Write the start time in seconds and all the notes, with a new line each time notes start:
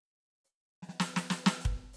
0.44 hi-hat pedal
0.82 snare
0.89 snare
1.00 snare
1.16 snare
1.30 snare
1.46 snare
1.61 closed hi-hat
1.65 kick
1.93 hi-hat pedal